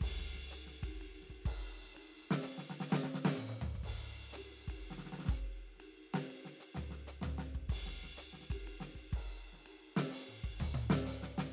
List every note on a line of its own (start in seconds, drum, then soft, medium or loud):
0.01 kick medium
0.01 ride medium
0.19 snare soft
0.35 snare soft
0.51 hi-hat pedal medium
0.51 ride medium
0.67 snare soft
0.83 kick soft
0.83 ride medium
1.01 ride medium
1.22 snare soft
1.30 kick soft
1.45 kick medium
1.45 crash medium
1.82 snare soft
1.94 hi-hat pedal soft
1.94 ride medium
2.31 snare medium
2.42 hi-hat pedal loud
2.42 ride medium
2.58 snare soft
2.70 snare soft
2.80 snare soft
2.90 snare medium
2.90 hi-hat pedal loud
3.04 snare soft
3.14 snare soft
3.25 snare medium
3.35 hi-hat pedal medium
3.35 high tom medium
3.49 high tom medium
3.61 floor tom medium
3.75 kick soft
3.83 kick soft
3.83 crash medium
3.83 ride medium
4.33 hi-hat pedal loud
4.33 ride medium
4.68 kick soft
4.68 ride medium
4.77 hi-hat pedal soft
4.77 ride soft
4.90 snare soft
4.98 snare soft
5.05 snare soft
5.12 snare soft
5.19 snare soft
5.25 kick medium
5.25 snare soft
5.30 open hi-hat medium
5.76 snare soft
5.80 ride medium
6.14 snare medium
6.14 ride loud
6.30 ride medium
6.45 snare soft
6.60 hi-hat pedal medium
6.75 snare soft
6.75 floor tom medium
6.91 snare soft
7.07 hi-hat pedal loud
7.21 snare soft
7.21 floor tom medium
7.38 snare soft
7.55 kick soft
7.69 kick medium
7.69 ride medium
7.86 snare soft
8.03 snare soft
8.17 hi-hat pedal loud
8.17 ride medium
8.33 snare soft
8.41 snare soft
8.50 kick soft
8.50 ride medium
8.67 ride medium
8.80 snare soft
8.95 kick soft
9.12 kick medium
9.12 crash soft
9.53 snare soft
9.66 ride medium
9.96 snare medium
9.96 ride loud
10.10 hi-hat pedal medium
10.10 ride medium
10.29 high tom soft
10.44 kick soft
10.60 floor tom medium
10.60 hi-hat pedal medium
10.74 open hi-hat soft
10.74 high tom medium
10.90 snare loud
11.06 snare soft
11.06 hi-hat pedal loud
11.22 snare soft
11.38 snare medium